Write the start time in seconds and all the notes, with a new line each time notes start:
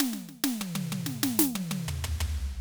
0.00 snare
0.13 snare
0.29 snare
0.44 snare
0.61 high tom
0.75 high tom
0.92 high tom
1.06 snare
1.23 snare
1.39 snare
1.55 high tom
1.71 high tom
1.88 floor tom
2.04 floor tom
2.20 floor tom